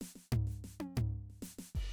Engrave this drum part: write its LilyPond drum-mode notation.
\new DrumStaff \drummode { \time 4/4 \tempo 4 = 125 \tuplet 3/2 { <hhp sn>8 sn8 tomfh8 <sn hhp>8 sn8 <tommh hh>8 <hhp tomfh>8 r8 sn8 <sn hhp>8 sn8 <bd cymr>8 } | }